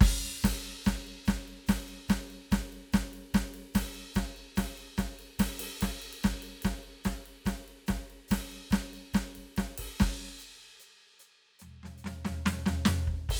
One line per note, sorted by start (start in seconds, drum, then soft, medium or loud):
0.01 kick loud
0.01 snare loud
0.01 crash loud
0.42 kick medium
0.42 snare loud
0.42 hi-hat pedal medium
0.42 crash loud
0.85 kick medium
0.85 snare loud
0.85 hi-hat pedal medium
0.85 crash medium
1.07 crash soft
1.26 kick medium
1.26 snare loud
1.26 hi-hat pedal medium
1.26 crash medium
1.48 crash soft
1.67 kick medium
1.67 snare loud
1.67 hi-hat pedal medium
1.67 crash medium
1.88 crash soft
2.09 kick soft
2.09 snare loud
2.09 hi-hat pedal medium
2.09 crash medium
2.31 crash soft
2.51 kick medium
2.51 snare loud
2.51 hi-hat pedal medium
2.51 crash medium
2.73 crash soft
2.93 kick medium
2.93 snare loud
2.93 hi-hat pedal medium
2.93 crash medium
3.14 crash medium
3.34 kick medium
3.34 snare loud
3.34 hi-hat pedal medium
3.34 crash medium
3.54 crash medium
3.74 kick medium
3.74 snare loud
3.74 hi-hat pedal medium
3.74 crash loud
3.95 crash soft
4.14 kick medium
4.14 snare loud
4.14 hi-hat pedal medium
4.14 crash medium
4.37 crash soft
4.56 kick soft
4.56 snare loud
4.56 hi-hat pedal medium
4.56 crash loud
4.78 crash medium
4.98 kick medium
4.98 snare loud
4.98 hi-hat pedal medium
4.98 crash medium
5.19 crash medium
5.39 kick medium
5.39 snare loud
5.39 hi-hat pedal medium
5.39 crash loud
5.49 kick soft
5.60 crash loud
5.81 kick medium
5.81 snare loud
5.81 hi-hat pedal medium
5.81 crash loud
5.91 kick soft
6.02 crash medium
6.13 crash medium
6.24 kick medium
6.24 snare loud
6.24 hi-hat pedal medium
6.24 crash medium
6.43 crash medium
6.63 kick medium
6.63 snare loud
6.63 hi-hat pedal medium
6.63 crash medium
6.84 crash soft
7.04 kick soft
7.04 snare loud
7.04 hi-hat pedal medium
7.04 crash medium
7.26 crash medium
7.46 kick soft
7.46 snare loud
7.46 hi-hat pedal medium
7.46 crash medium
7.68 crash soft
7.87 kick medium
7.87 snare loud
7.87 hi-hat pedal medium
7.87 crash medium
8.10 crash soft
8.28 kick soft
8.28 snare loud
8.28 hi-hat pedal medium
8.28 crash loud
8.52 crash soft
8.71 kick soft
8.71 snare loud
8.71 hi-hat pedal medium
8.71 crash medium
8.94 crash medium
9.14 kick soft
9.14 snare loud
9.14 hi-hat pedal medium
9.14 crash medium
9.36 kick soft
9.36 crash medium
9.57 kick soft
9.57 snare loud
9.57 hi-hat pedal medium
9.57 crash medium
9.78 kick soft
9.78 crash loud
9.99 kick medium
9.99 snare loud
9.99 hi-hat pedal medium
9.99 crash medium
10.39 hi-hat pedal medium
10.80 hi-hat pedal medium
11.20 hi-hat pedal medium
11.59 floor tom soft
11.59 hi-hat pedal medium
11.83 snare soft
11.83 floor tom soft
11.98 hi-hat pedal soft
12.05 snare medium
12.05 floor tom medium
12.25 snare medium
12.25 floor tom medium
12.46 snare loud
12.46 floor tom loud
12.66 snare loud
12.66 floor tom loud
12.86 snare loud
12.86 floor tom loud
13.08 kick soft
13.29 kick medium
13.29 crash loud